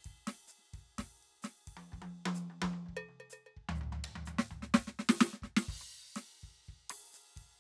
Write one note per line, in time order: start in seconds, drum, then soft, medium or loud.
0.01 hi-hat pedal soft
0.05 kick soft
0.05 ride medium
0.11 kick soft
0.28 snare medium
0.28 ride medium
0.48 hi-hat pedal medium
0.53 ride soft
0.59 snare soft
0.74 kick soft
0.74 ride soft
0.79 kick soft
0.99 kick soft
0.99 snare medium
0.99 ride medium
1.04 kick soft
1.23 ride soft
1.43 snare soft
1.43 hi-hat pedal medium
1.43 ride medium
1.68 kick soft
1.68 ride medium
1.77 high tom soft
1.93 kick soft
1.93 high tom soft
1.99 kick soft
1.99 high tom medium
2.17 high tom soft
2.26 high tom loud
2.35 hi-hat pedal medium
2.50 high tom soft
2.62 kick soft
2.62 high tom loud
2.74 high tom soft
2.86 kick soft
2.86 mid tom soft
2.94 kick soft
2.94 percussion loud
3.09 mid tom soft
3.21 percussion medium
3.31 hi-hat pedal medium
3.31 percussion medium
3.47 percussion soft
3.57 kick soft
3.69 floor tom medium
3.76 hi-hat pedal soft
3.82 kick soft
3.82 floor tom soft
3.89 kick soft
3.93 floor tom medium
4.05 floor tom loud
4.16 floor tom medium
4.26 floor tom medium
4.26 hi-hat pedal medium
4.39 snare medium
4.51 kick soft
4.51 floor tom soft
4.57 kick soft
4.63 snare soft
4.75 kick soft
4.75 snare loud
4.83 kick soft
4.88 snare soft
5.00 snare medium
5.10 snare loud
5.18 snare loud
5.18 hi-hat pedal medium
5.34 snare soft
5.43 kick soft
5.43 snare soft
5.48 kick soft
5.57 snare loud
5.65 hi-hat pedal soft
5.69 kick soft
5.69 crash medium
5.75 kick soft
5.82 cross-stick soft
6.16 snare medium
6.16 hi-hat pedal medium
6.16 ride medium
6.42 kick soft
6.42 ride soft
6.64 hi-hat pedal soft
6.68 kick soft
6.68 ride soft
6.74 kick soft
6.90 cross-stick medium
6.90 ride loud
7.14 hi-hat pedal medium
7.14 ride soft
7.37 kick soft
7.37 ride soft
7.42 kick soft